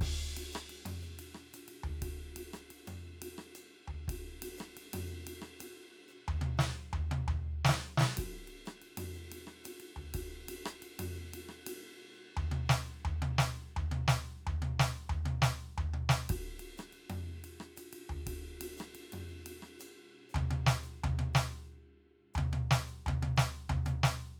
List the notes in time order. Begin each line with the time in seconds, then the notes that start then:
0.01 kick, ride
0.37 ride
0.52 cross-stick, hi-hat pedal
0.70 ride
0.85 mid tom, ride
1.02 hi-hat pedal
1.19 ride
1.35 cross-stick
1.53 hi-hat pedal, ride
1.68 ride
1.84 floor tom
2.02 kick, ride
2.36 ride
2.53 cross-stick, hi-hat pedal
2.70 ride
2.88 mid tom, ride bell
3.02 hi-hat pedal
3.22 ride
3.38 cross-stick
3.55 hi-hat pedal, ride bell
3.88 floor tom
4.08 kick, ride
4.42 ride
4.57 cross-stick, hi-hat pedal
4.77 ride
4.93 mid tom, ride
5.07 hi-hat pedal
5.27 ride
5.42 cross-stick
5.60 hi-hat pedal, ride
6.08 hi-hat pedal
6.28 floor tom
6.41 high tom
6.58 snare, hi-hat pedal
6.93 floor tom
7.11 high tom
7.28 floor tom
7.65 snare
7.69 snare
7.98 snare
8.01 snare
8.17 kick, ride
8.48 ride
8.65 cross-stick, hi-hat pedal
8.82 ride
8.97 mid tom, ride
9.14 hi-hat pedal
9.32 ride
9.47 cross-stick
9.64 hi-hat pedal, ride
9.80 ride
9.96 floor tom
10.14 kick, ride
10.49 ride
10.66 cross-stick, hi-hat pedal
10.82 ride
10.99 mid tom, ride
11.15 hi-hat pedal
11.34 ride
11.49 cross-stick
11.66 hi-hat pedal, ride
12.13 hi-hat pedal
12.37 floor tom
12.51 high tom
12.66 snare, hi-hat pedal
13.05 floor tom
13.22 high tom
13.38 snare
13.76 floor tom
13.91 high tom
14.08 snare
14.47 floor tom
14.62 high tom
14.80 snare
15.09 floor tom
15.26 high tom
15.42 snare
15.78 floor tom
15.94 high tom
16.09 snare
16.29 kick, ride
16.60 ride
16.77 cross-stick, hi-hat pedal
16.93 ride
17.10 mid tom, ride
17.44 ride
17.60 cross-stick
17.77 hi-hat pedal, ride
17.93 ride
18.09 floor tom
18.27 kick, ride
18.61 ride
18.77 cross-stick, hi-hat pedal
18.95 ride
19.12 mid tom, ride
19.28 hi-hat pedal
19.46 ride
19.62 cross-stick
19.79 hi-hat pedal, ride bell
20.29 hi-hat pedal
20.34 floor tom, high tom
20.51 high tom
20.67 snare
20.83 hi-hat pedal
21.04 floor tom, high tom
21.19 high tom
21.34 snare, hi-hat pedal
22.34 floor tom, hi-hat pedal
22.38 high tom
22.53 high tom
22.71 snare
22.87 hi-hat pedal
23.06 floor tom, high tom
23.23 high tom
23.36 snare, hi-hat pedal
23.69 floor tom, high tom
23.86 hi-hat pedal, high tom
24.03 snare